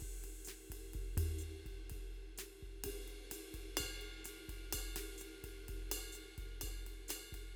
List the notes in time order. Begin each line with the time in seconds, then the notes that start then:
0.01 kick, snare, ride
0.07 kick
0.24 ride
0.45 snare, hi-hat pedal, ride
0.70 kick, ride
0.94 kick, ride
1.00 kick
1.17 floor tom, ride
1.39 hi-hat pedal, ride
1.66 kick, ride
1.71 kick
1.90 kick, ride
1.97 kick
2.15 ride
2.38 snare, hi-hat pedal, ride
2.63 kick
2.84 kick, ride
2.91 kick
3.08 ride
3.31 snare, hi-hat pedal, ride
3.54 kick, ride
3.77 kick, ride bell
3.86 kick
4.01 ride
4.25 snare, hi-hat pedal, ride
4.49 kick, ride
4.54 kick
4.73 kick, ride bell
4.79 kick
4.96 snare, ride
5.18 hi-hat pedal, ride
5.44 kick, ride
5.69 kick, ride
5.74 kick
5.91 snare, ride bell
6.13 hi-hat pedal, ride
6.38 kick, ride
6.44 kick
6.61 kick, snare, ride bell
6.69 kick
6.87 ride
6.97 snare
7.08 snare, hi-hat pedal, ride bell
7.33 kick, ride